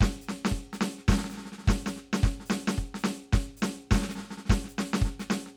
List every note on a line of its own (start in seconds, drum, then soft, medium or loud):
0.01 kick loud
0.01 snare loud
0.22 hi-hat pedal medium
0.29 snare medium
0.45 snare loud
0.52 kick medium
0.73 snare medium
0.73 hi-hat pedal medium
0.81 snare loud
0.99 snare soft
1.08 kick loud
1.08 snare loud
1.12 snare loud
1.16 snare medium
1.18 snare medium
1.25 snare medium
1.30 snare soft
1.30 hi-hat pedal medium
1.33 snare medium
1.38 snare medium
1.42 snare soft
1.46 snare medium
1.52 snare medium
1.59 snare soft
1.64 kick loud
1.64 snare soft
1.69 snare loud
1.86 snare loud
1.86 hi-hat pedal medium
1.97 snare soft
2.13 snare loud
2.23 kick loud
2.23 snare medium
2.40 snare soft
2.46 hi-hat pedal medium
2.50 snare loud
2.68 snare loud
2.78 kick medium
2.95 snare medium
2.99 hi-hat pedal medium
3.04 snare loud
3.33 kick loud
3.33 snare loud
3.57 hi-hat pedal medium
3.63 snare loud
3.91 kick loud
3.91 snare loud
3.95 snare loud
3.99 snare medium
4.03 snare medium
4.09 snare medium
4.09 hi-hat pedal medium
4.16 snare medium
4.18 snare medium
4.23 snare soft
4.28 snare soft
4.31 snare medium
4.38 snare medium
4.46 snare soft
4.50 kick loud
4.50 snare loud
4.65 snare soft
4.69 hi-hat pedal medium
4.79 snare loud
4.94 snare loud
5.02 kick loud
5.02 snare medium
5.20 snare medium
5.20 hi-hat pedal medium
5.30 snare loud
5.46 snare soft